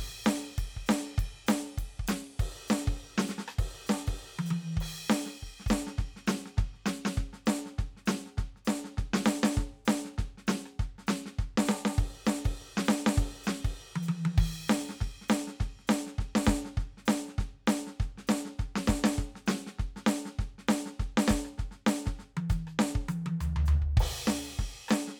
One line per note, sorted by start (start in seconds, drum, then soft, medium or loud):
0.24 snare loud
0.24 hi-hat pedal medium
0.24 ride medium
0.40 snare soft
0.58 kick medium
0.58 ride medium
0.76 kick soft
0.86 snare loud
0.86 hi-hat pedal medium
0.86 ride medium
0.99 cross-stick soft
1.18 kick loud
1.18 ride medium
1.46 snare loud
1.46 hi-hat pedal medium
1.46 ride loud
1.78 kick medium
1.78 ride medium
1.99 kick medium
2.07 snare loud
2.07 hi-hat pedal medium
2.07 ride loud
2.12 kick soft
2.39 kick medium
2.39 crash medium
2.68 snare loud
2.68 hi-hat pedal medium
2.87 kick medium
2.87 crash medium
3.18 snare loud
3.27 snare medium
3.27 hi-hat pedal medium
3.38 snare medium
3.48 cross-stick medium
3.58 kick medium
3.58 crash medium
3.86 snare loud
3.86 hi-hat pedal medium
4.07 kick medium
4.07 crash medium
4.39 high tom loud
4.46 hi-hat pedal medium
4.50 high tom loud
4.77 kick medium
4.77 crash loud
5.10 snare loud
5.10 hi-hat pedal medium
5.25 snare soft
5.42 kick soft
5.60 snare soft
5.66 kick medium
5.66 hi-hat pedal medium
5.70 snare loud
5.87 snare medium
5.98 kick medium
5.98 snare soft
6.16 snare soft
6.27 snare loud
6.27 hi-hat pedal medium
6.46 snare soft
6.57 kick loud
6.57 snare soft
6.74 snare soft
6.86 snare loud
6.86 hi-hat pedal medium
7.05 snare loud
7.17 kick medium
7.17 snare soft
7.33 snare soft
7.46 snare loud
7.46 hi-hat pedal medium
7.66 snare soft
7.78 kick medium
7.78 snare soft
7.97 snare soft
8.05 snare loud
8.05 hi-hat pedal medium
8.26 snare soft
8.37 kick medium
8.37 snare soft
8.56 snare soft
8.65 snare loud
8.65 hi-hat pedal medium
8.84 snare soft
8.97 kick medium
8.97 snare soft
9.13 snare loud
9.25 snare loud
9.25 hi-hat pedal medium
9.43 snare loud
9.57 kick medium
9.57 snare soft
9.85 snare loud
9.85 hi-hat pedal medium
10.04 snare soft
10.18 kick medium
10.18 snare medium
10.37 snare soft
10.47 snare loud
10.47 hi-hat pedal medium
10.65 cross-stick soft
10.79 kick medium
10.79 snare soft
10.98 snare soft
11.07 hi-hat pedal medium
11.26 snare medium
11.38 kick medium
11.38 snare soft
11.57 snare loud
11.66 snare loud
11.66 hi-hat pedal medium
11.85 snare loud
11.98 kick loud
11.98 crash medium
12.26 snare loud
12.26 hi-hat pedal medium
12.45 kick medium
12.45 crash medium
12.77 snare loud
12.85 snare loud
12.85 hi-hat pedal medium
13.06 snare loud
13.17 kick loud
13.17 crash medium
13.44 snare loud
13.44 hi-hat pedal medium
13.64 kick medium
13.64 crash medium
13.95 high tom loud
14.03 hi-hat pedal medium
14.08 high tom loud
14.25 high tom loud
14.38 kick loud
14.38 crash loud
14.68 snare loud
14.68 hi-hat pedal medium
14.89 snare medium
15.00 kick medium
15.00 snare soft
15.21 snare soft
15.28 snare loud
15.28 hi-hat pedal medium
15.47 snare soft
15.60 kick medium
15.60 snare soft
15.79 snare soft
15.87 snare loud
15.87 hi-hat pedal medium
16.06 snare soft
16.18 kick medium
16.18 snare soft
16.35 snare loud
16.44 kick medium
16.44 snare loud
16.44 hi-hat pedal medium
16.65 snare soft
16.77 kick medium
16.77 snare soft
16.97 snare soft
17.05 snare loud
17.05 hi-hat pedal medium
17.28 snare soft
17.38 kick medium
17.38 snare medium
17.67 snare loud
17.67 hi-hat pedal medium
17.87 snare soft
18.00 kick medium
18.00 snare soft
18.17 snare soft
18.27 snare loud
18.27 hi-hat pedal medium
18.45 snare soft
18.59 kick medium
18.59 snare soft
18.75 snare loud
18.87 kick medium
18.87 snare loud
18.87 hi-hat pedal medium
19.04 snare loud
19.18 kick medium
19.18 snare soft
19.35 snare soft
19.46 snare loud
19.46 hi-hat pedal medium
19.66 snare medium
19.79 kick medium
19.79 snare soft
19.96 snare soft
20.06 snare loud
20.06 hi-hat pedal medium
20.25 snare medium
20.39 kick medium
20.39 snare soft
20.58 snare soft
20.68 snare loud
20.68 hi-hat pedal medium
20.86 snare soft
20.99 kick medium
20.99 snare soft
21.17 snare loud
21.27 kick medium
21.27 snare loud
21.27 hi-hat pedal medium
21.45 cross-stick soft
21.58 kick medium
21.58 snare soft
21.71 snare soft
21.86 snare loud
21.86 hi-hat pedal medium
22.06 kick medium
22.06 snare medium
22.19 snare soft
22.37 high tom loud
22.50 kick loud
22.50 snare soft
22.50 hi-hat pedal medium
22.67 cross-stick soft
22.79 snare loud
22.95 kick medium
23.08 hi-hat pedal medium
23.08 high tom loud
23.26 high tom loud
23.40 floor tom loud
23.40 hi-hat pedal medium
23.56 floor tom loud
23.65 floor tom loud
23.65 hi-hat pedal medium
23.82 kick soft
23.97 kick loud
23.97 crash loud
24.27 snare loud
24.27 hi-hat pedal medium
24.44 cross-stick soft
24.44 snare soft
24.59 kick medium
24.59 snare soft
24.88 cross-stick medium
24.88 snare loud
24.88 hi-hat pedal medium
25.07 snare soft